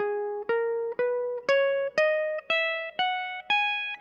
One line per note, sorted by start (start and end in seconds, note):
0.00 0.46 G#4
0.50 0.95 A#4
0.99 1.41 B4
1.49 1.91 C#5
1.98 2.41 D#5
2.50 2.92 E5
2.99 3.43 F#5
3.50 3.97 G#5